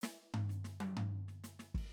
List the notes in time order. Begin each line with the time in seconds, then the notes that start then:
0.01 snare, hi-hat pedal
0.21 snare
0.34 floor tom
0.49 snare, hi-hat pedal
0.64 snare
0.80 closed hi-hat, high tom
0.97 floor tom
1.28 snare
1.44 snare, hi-hat pedal
1.59 snare
1.75 kick, crash